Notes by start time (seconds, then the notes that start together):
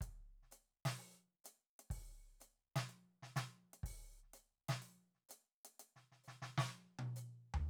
0.01 kick, open hi-hat
0.43 snare
0.52 closed hi-hat, hi-hat pedal
0.85 snare, open hi-hat
0.98 open hi-hat
1.45 closed hi-hat, hi-hat pedal
1.79 closed hi-hat
1.91 kick, open hi-hat
2.41 closed hi-hat, hi-hat pedal
2.76 snare, open hi-hat
2.90 open hi-hat
3.23 snare
3.36 snare, closed hi-hat, hi-hat pedal
3.74 closed hi-hat
3.83 kick, open hi-hat
4.23 snare
4.34 hi-hat pedal, open hi-hat
4.69 snare, open hi-hat
4.82 open hi-hat
5.15 snare
5.29 closed hi-hat, hi-hat pedal
5.65 closed hi-hat
5.80 open hi-hat
5.96 snare
6.12 snare
6.24 hi-hat pedal
6.28 snare
6.42 snare
6.58 snare
6.99 high tom
7.16 hi-hat pedal
7.54 floor tom